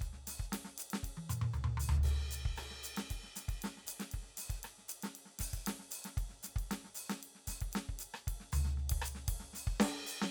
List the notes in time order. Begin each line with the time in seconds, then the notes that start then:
0.01 kick, ride
0.13 snare
0.27 snare, hi-hat pedal, ride
0.39 kick
0.51 snare, hi-hat pedal, ride
0.65 snare
0.78 hi-hat pedal, ride
0.90 snare, ride
1.03 kick, hi-hat pedal, ride
1.17 high tom
1.29 hi-hat pedal, mid tom
1.41 mid tom
1.53 floor tom, hi-hat pedal
1.64 mid tom
1.77 floor tom, hi-hat pedal
1.89 floor tom
1.97 kick
2.03 kick, hi-hat pedal, ride
2.20 cross-stick
2.31 hi-hat pedal, ride
2.45 kick
2.56 cross-stick, hi-hat pedal, ride
2.70 snare
2.83 hi-hat pedal, ride
2.97 snare, ride
3.09 kick, hi-hat pedal, ride
3.23 snare
3.36 snare, hi-hat pedal, ride
3.48 kick, ride
3.60 snare, hi-hat pedal, ride
3.77 snare
3.85 kick, hi-hat pedal, ride
4.00 snare, ride
4.10 kick, hi-hat pedal, ride
4.22 snare
4.37 snare, hi-hat pedal, ride
4.50 kick, ride
4.63 cross-stick, ride
4.78 snare
4.88 hi-hat pedal, ride
5.03 snare, ride
5.15 ride
5.25 snare
5.39 kick, snare, hi-hat pedal, ride
5.53 kick, ride
5.64 snare, hi-hat pedal, ride
5.79 snare
5.91 hi-hat pedal, ride
6.04 snare, ride
6.17 kick, ride
6.29 snare
6.43 snare, hi-hat pedal, ride
6.56 kick, ride
6.71 snare, ride
6.84 snare
6.95 hi-hat pedal, ride
7.09 snare, ride
7.20 hi-hat pedal, ride
7.35 snare
7.47 kick, snare, hi-hat pedal, ride
7.61 kick, ride
7.72 snare, hi-hat pedal, ride
7.89 kick
7.99 hi-hat pedal, ride
8.14 cross-stick
8.27 kick, ride
8.40 snare
8.52 floor tom, hi-hat pedal
8.65 snare
8.77 snare
8.90 kick, ride
9.02 cross-stick, hi-hat pedal
9.15 snare
9.28 kick, hi-hat pedal, ride
9.40 snare
9.53 snare, hi-hat pedal
9.67 kick
9.80 snare, ride
10.07 hi-hat pedal
10.22 snare